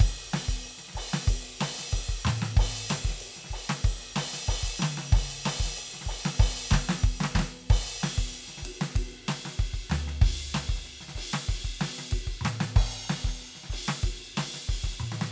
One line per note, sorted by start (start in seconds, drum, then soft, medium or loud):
0.01 kick loud
0.01 crash medium
0.29 kick soft
0.33 snare loud
0.33 hi-hat pedal medium
0.33 crash medium
0.49 kick medium
0.56 snare soft
0.63 hi-hat pedal medium
0.63 crash soft
0.78 snare soft
0.89 snare soft
0.93 kick soft
0.93 snare soft
0.93 hi-hat pedal medium
0.97 crash loud
1.14 snare loud
1.28 kick loud
1.28 crash loud
1.43 crash medium
1.60 snare loud
1.60 hi-hat pedal medium
1.60 crash loud
1.79 snare medium
1.92 kick medium
1.92 crash medium
2.09 kick medium
2.25 snare loud
2.25 hi-hat pedal medium
2.25 mid tom loud
2.42 snare loud
2.57 kick loud
2.57 crash loud
2.90 snare loud
2.90 hi-hat pedal medium
2.90 crash loud
3.05 kick medium
3.10 snare medium
3.21 crash medium
3.37 snare soft
3.45 snare medium
3.51 kick soft
3.51 hi-hat pedal medium
3.51 crash medium
3.70 snare loud
3.85 kick loud
3.85 crash medium
3.99 crash soft
4.14 kick soft
4.14 snare loud
4.14 hi-hat pedal medium
4.14 crash loud
4.34 snare medium
4.48 kick medium
4.48 crash loud
4.63 kick medium
4.80 snare loud
4.80 hi-hat pedal medium
4.80 high tom loud
4.98 snare medium
5.13 kick loud
5.13 crash loud
5.45 snare loud
5.45 hi-hat pedal medium
5.45 crash loud
5.60 kick medium
5.66 snare medium
5.77 hi-hat pedal medium
5.77 crash medium
5.94 snare medium
6.01 snare medium
6.07 kick medium
6.07 hi-hat pedal medium
6.07 crash loud
6.26 snare loud
6.40 kick loud
6.40 hi-hat pedal medium
6.40 crash loud
6.71 kick loud
6.71 snare loud
6.74 snare loud
6.89 snare loud
6.91 snare loud
7.04 kick loud
7.04 snare soft
7.04 hi-hat pedal medium
7.21 snare loud
7.24 snare loud
7.35 kick medium
7.35 snare loud
7.35 hi-hat pedal soft
7.39 snare loud
7.70 kick loud
7.70 hi-hat pedal medium
7.70 crash loud
8.02 snare loud
8.02 hi-hat pedal medium
8.02 ride loud
8.18 kick medium
8.27 snare soft
8.33 hi-hat pedal medium
8.33 ride medium
8.48 snare soft
8.58 snare medium
8.63 kick soft
8.63 hi-hat pedal medium
8.63 ride loud
8.82 snare loud
8.96 kick medium
8.96 ride loud
9.12 ride medium
9.24 kick soft
9.24 hi-hat pedal medium
9.28 snare loud
9.28 ride loud
9.46 snare medium
9.59 kick medium
9.59 ride medium
9.74 kick medium
9.90 snare loud
9.90 floor tom loud
9.90 hi-hat pedal medium
10.08 snare medium
10.22 kick loud
10.22 ride loud
10.53 snare loud
10.53 hi-hat pedal medium
10.53 ride medium
10.69 kick medium
10.76 snare soft
10.84 hi-hat pedal medium
10.84 ride medium
11.01 snare medium
11.09 snare medium
11.15 kick soft
11.15 hi-hat pedal medium
11.15 ride loud
11.34 snare loud
11.49 kick medium
11.49 ride medium
11.64 kick medium
11.64 ride soft
11.80 snare loud
11.80 hi-hat pedal medium
11.80 ride loud
11.99 snare medium
12.12 kick medium
12.12 ride loud
12.27 kick medium
12.33 ride soft
12.41 snare loud
12.41 hi-hat pedal medium
12.41 mid tom loud
12.61 snare loud
12.76 kick loud
12.76 crash loud
13.08 snare loud
13.08 hi-hat pedal medium
13.08 ride medium
13.25 kick medium
13.25 snare medium
13.41 ride medium
13.55 snare soft
13.64 snare medium
13.70 kick medium
13.70 hi-hat pedal medium
13.70 ride loud
13.88 snare loud
14.04 kick medium
14.04 ride loud
14.19 ride soft
14.35 kick soft
14.35 snare loud
14.35 hi-hat pedal medium
14.35 ride loud
14.54 snare medium
14.68 kick medium
14.68 ride loud
14.84 kick medium
14.84 snare soft
14.92 snare soft
14.99 hi-hat pedal medium
14.99 mid tom loud
15.12 snare medium
15.22 snare loud